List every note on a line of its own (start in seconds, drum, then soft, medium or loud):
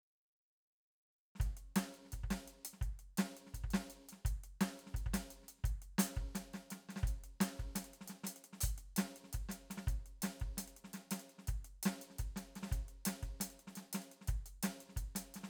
1.35 snare soft
1.38 kick medium
1.38 snare soft
1.41 snare soft
1.41 closed hi-hat medium
1.44 snare soft
1.57 closed hi-hat soft
1.76 snare medium
1.76 closed hi-hat medium
1.94 closed hi-hat soft
2.05 snare soft
2.12 kick soft
2.12 closed hi-hat medium
2.23 kick soft
2.30 snare medium
2.30 closed hi-hat medium
2.47 closed hi-hat soft
2.65 closed hi-hat medium
2.73 snare soft
2.81 kick soft
2.81 closed hi-hat soft
2.99 closed hi-hat soft
3.17 snare medium
3.17 closed hi-hat medium
3.37 closed hi-hat soft
3.46 snare soft
3.54 kick soft
3.54 closed hi-hat medium
3.63 kick soft
3.70 snare medium
3.70 closed hi-hat medium
3.90 closed hi-hat medium
4.09 snare soft
4.09 closed hi-hat medium
4.25 kick soft
4.25 closed hi-hat medium
4.43 closed hi-hat soft
4.61 snare medium
4.61 closed hi-hat medium
4.79 closed hi-hat soft
4.86 snare soft
4.94 kick soft
4.94 closed hi-hat medium
5.06 kick soft
5.13 snare medium
5.13 closed hi-hat medium
5.30 closed hi-hat medium
5.43 snare soft
5.48 closed hi-hat medium
5.58 snare soft
5.64 kick soft
5.64 closed hi-hat medium
5.82 closed hi-hat soft
5.98 closed hi-hat loud
5.98 snare medium
6.16 kick soft
6.16 closed hi-hat soft
6.35 snare medium
6.35 closed hi-hat medium
6.53 snare soft
6.53 closed hi-hat soft
6.70 snare soft
6.70 closed hi-hat medium
6.89 snare soft
6.89 closed hi-hat soft
6.96 snare soft
7.03 kick medium
7.07 closed hi-hat medium
7.24 closed hi-hat soft
7.40 snare medium
7.40 closed hi-hat loud
7.59 kick soft
7.59 closed hi-hat soft
7.75 snare medium
7.75 closed hi-hat loud
7.84 closed hi-hat soft
7.93 closed hi-hat soft
8.01 snare soft
8.07 snare soft
8.07 closed hi-hat medium
8.23 snare soft
8.23 closed hi-hat loud
8.36 closed hi-hat soft
8.44 closed hi-hat soft
8.53 snare soft
8.60 closed hi-hat loud
8.60 kick soft
8.78 closed hi-hat soft
8.96 snare medium
8.96 closed hi-hat loud
9.16 closed hi-hat soft
9.24 snare soft
9.33 kick soft
9.33 closed hi-hat medium
9.49 snare soft
9.49 closed hi-hat medium
9.70 snare soft
9.70 closed hi-hat medium
9.77 snare soft
9.87 kick soft
9.87 closed hi-hat medium
10.06 closed hi-hat soft
10.22 snare medium
10.22 closed hi-hat loud
10.40 kick soft
10.40 closed hi-hat soft
10.57 snare soft
10.57 closed hi-hat loud
10.67 closed hi-hat soft
10.76 closed hi-hat soft
10.84 snare soft
10.93 snare soft
10.93 closed hi-hat medium
11.11 snare medium
11.11 closed hi-hat medium
11.19 closed hi-hat soft
11.29 closed hi-hat soft
11.38 snare soft
11.47 kick soft
11.47 closed hi-hat medium
11.64 closed hi-hat soft
11.83 snare medium
11.83 closed hi-hat loud
12.01 closed hi-hat medium
12.10 snare soft
12.18 kick soft
12.18 closed hi-hat medium
12.36 snare soft
12.36 closed hi-hat medium
12.55 snare soft
12.55 closed hi-hat soft
12.62 snare soft
12.66 snare soft
12.71 kick soft
12.71 closed hi-hat medium
12.88 closed hi-hat soft
13.05 snare medium
13.05 closed hi-hat loud
13.22 kick soft
13.22 closed hi-hat soft
13.40 snare soft
13.40 closed hi-hat loud
13.50 closed hi-hat soft
13.59 closed hi-hat soft
13.67 snare soft
13.75 snare soft
13.75 closed hi-hat medium
13.93 snare medium
13.93 closed hi-hat medium
14.02 closed hi-hat soft
14.11 closed hi-hat soft
14.21 snare soft
14.27 kick soft
14.27 closed hi-hat medium
14.46 closed hi-hat medium
14.63 snare medium
14.63 closed hi-hat loud
14.80 closed hi-hat soft
14.89 snare soft
14.96 kick soft
14.96 closed hi-hat medium
15.15 snare soft
15.15 closed hi-hat loud
15.34 snare soft
15.34 closed hi-hat medium
15.43 snare soft